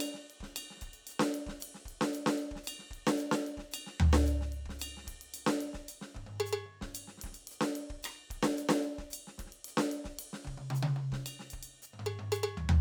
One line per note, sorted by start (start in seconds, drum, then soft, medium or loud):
0.01 hi-hat pedal medium
0.01 ride bell loud
0.15 snare soft
0.30 ride soft
0.41 kick soft
0.41 snare soft
0.56 hi-hat pedal medium
0.56 ride bell loud
0.71 snare soft
0.77 snare soft
0.81 kick soft
0.81 snare soft
0.81 ride bell soft
0.85 snare soft
0.94 ride bell soft
1.07 hi-hat pedal medium
1.07 ride bell medium
1.20 snare loud
1.35 ride medium
1.47 kick soft
1.47 snare soft
1.61 hi-hat pedal medium
1.61 ride loud
1.75 snare soft
1.86 kick soft
1.86 ride medium
2.01 snare medium
2.13 hi-hat pedal medium
2.13 ride medium
2.27 snare loud
2.38 ride soft
2.52 kick soft
2.56 snare soft
2.64 hi-hat pedal medium
2.64 ride bell loud
2.79 snare soft
2.91 kick soft
2.91 ride soft
3.07 snare loud
3.18 hi-hat pedal medium
3.18 ride soft
3.32 snare loud
3.47 ride soft
3.58 kick soft
3.58 snare soft
3.72 hi-hat pedal medium
3.72 ride bell loud
3.87 snare soft
4.00 floor tom loud
4.13 snare loud
4.26 hi-hat pedal medium
4.26 ride medium
4.42 snare soft
4.53 ride soft
4.66 kick soft
4.66 snare soft
4.71 kick soft
4.79 hi-hat pedal medium
4.79 ride bell loud
4.97 snare soft
5.05 kick soft
5.05 snare soft
5.05 ride medium
5.09 snare soft
5.22 ride medium
5.34 hi-hat pedal medium
5.34 ride bell medium
5.47 snare loud
5.61 ride medium
5.74 kick soft
5.74 snare soft
5.89 hi-hat pedal medium
5.89 ride bell medium
6.02 snare soft
6.15 kick soft
6.15 mid tom medium
6.27 mid tom medium
6.41 percussion loud
6.46 hi-hat pedal medium
6.53 percussion loud
6.66 mid tom soft
6.82 kick soft
6.82 snare medium
6.95 hi-hat pedal medium
6.95 ride bell loud
7.08 snare soft
7.22 kick soft
7.22 snare soft
7.22 ride medium
7.30 kick soft
7.30 snare soft
7.35 ride bell medium
7.48 hi-hat pedal medium
7.48 ride medium
7.61 snare medium
7.76 ride medium
7.90 kick soft
8.03 cross-stick medium
8.03 hi-hat pedal medium
8.03 ride bell loud
8.31 kick soft
8.31 ride medium
8.37 kick soft
8.43 snare loud
8.58 hi-hat pedal medium
8.58 ride medium
8.69 snare loud
8.83 ride soft
8.99 kick soft
8.99 snare soft
9.04 kick soft
9.11 hi-hat pedal medium
9.11 ride bell loud
9.28 snare soft
9.38 kick soft
9.38 snare soft
9.38 ride medium
9.47 snare soft
9.53 ride medium
9.65 hi-hat pedal medium
9.65 ride medium
9.78 snare loud
9.92 ride medium
10.05 kick soft
10.05 snare soft
10.19 hi-hat pedal medium
10.19 ride loud
10.33 snare medium
10.45 kick soft
10.45 high tom medium
10.58 high tom medium
10.71 high tom loud
10.75 hi-hat pedal medium
10.83 high tom loud
10.97 high tom medium
11.12 kick soft
11.12 snare medium
11.26 hi-hat pedal medium
11.26 ride bell loud
11.40 snare soft
11.51 kick soft
11.51 ride bell medium
11.63 ride bell medium
11.83 hi-hat pedal medium
11.94 mid tom medium
12.00 mid tom medium
12.07 percussion loud
12.19 mid tom medium
12.33 hi-hat pedal medium
12.33 percussion loud
12.44 percussion loud
12.58 floor tom loud
12.70 floor tom loud